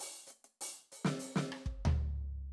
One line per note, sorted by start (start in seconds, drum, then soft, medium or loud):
0.00 open hi-hat loud
0.27 closed hi-hat soft
0.27 hi-hat pedal medium
0.44 closed hi-hat soft
0.61 open hi-hat loud
0.92 hi-hat pedal medium
1.05 snare medium
1.19 hi-hat pedal medium
1.36 snare medium
1.52 cross-stick medium
1.66 kick soft
1.85 floor tom loud